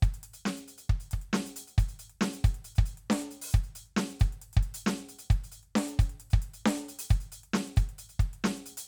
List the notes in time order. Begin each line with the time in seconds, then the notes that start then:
0.03 kick, closed hi-hat
0.14 closed hi-hat
0.24 closed hi-hat
0.34 closed hi-hat
0.46 snare
0.57 closed hi-hat
0.68 closed hi-hat
0.90 kick, closed hi-hat
1.00 closed hi-hat
1.11 kick, closed hi-hat
1.22 closed hi-hat
1.33 snare
1.46 closed hi-hat
1.56 closed hi-hat
1.68 closed hi-hat
1.78 closed hi-hat, kick
1.89 closed hi-hat
1.99 closed hi-hat
2.10 closed hi-hat
2.21 snare
2.33 closed hi-hat
2.44 closed hi-hat, kick
2.55 closed hi-hat
2.65 closed hi-hat
2.76 closed hi-hat, kick
2.86 closed hi-hat
2.98 closed hi-hat
3.10 snare
3.22 closed hi-hat
3.31 closed hi-hat
3.42 open hi-hat
3.51 kick, closed hi-hat, hi-hat pedal
3.64 closed hi-hat
3.76 closed hi-hat
3.86 closed hi-hat
3.97 snare
4.10 closed hi-hat
4.21 kick
4.33 closed hi-hat
4.42 closed hi-hat
4.53 kick, closed hi-hat
4.63 closed hi-hat
4.74 closed hi-hat
4.87 snare
4.99 closed hi-hat
5.09 closed hi-hat
5.30 kick, closed hi-hat
5.44 closed hi-hat
5.52 closed hi-hat
5.63 closed hi-hat
5.76 snare
5.88 closed hi-hat
5.99 closed hi-hat, kick
6.10 closed hi-hat
6.20 closed hi-hat
6.31 closed hi-hat, kick
6.42 closed hi-hat
6.54 closed hi-hat
6.66 snare
6.78 closed hi-hat
6.89 closed hi-hat
6.99 closed hi-hat
7.10 closed hi-hat, kick
7.21 closed hi-hat
7.32 closed hi-hat
7.44 closed hi-hat
7.54 snare
7.68 closed hi-hat
7.77 closed hi-hat, kick
7.89 closed hi-hat
7.99 closed hi-hat
8.09 closed hi-hat
8.20 kick, closed hi-hat
8.34 closed hi-hat
8.44 snare
8.58 closed hi-hat
8.66 closed hi-hat
8.78 closed hi-hat